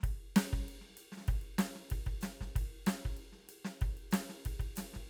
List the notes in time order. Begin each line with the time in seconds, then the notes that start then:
0.00 kick, snare, ride
0.36 snare, hi-hat pedal, ride
0.53 kick
0.68 ride
0.81 snare
0.86 snare
0.89 snare
0.92 snare
0.97 hi-hat pedal, ride
1.12 snare
1.17 snare
1.21 snare
1.28 kick, ride
1.42 ride
1.59 snare, hi-hat pedal, ride
1.75 snare
1.83 snare
1.90 kick, ride
2.06 kick, ride
2.21 snare, hi-hat pedal, ride
2.41 kick, snare
2.56 kick, ride
2.87 snare, hi-hat pedal, ride
3.05 kick
3.13 snare, ride
3.32 snare
3.38 snare
3.43 snare
3.47 snare, hi-hat pedal, ride
3.65 snare
3.81 kick, ride
3.97 ride
4.11 snare, hi-hat pedal, ride
4.29 snare
4.45 kick, ride
4.60 kick, ride
4.76 snare, hi-hat pedal, ride
4.93 kick, snare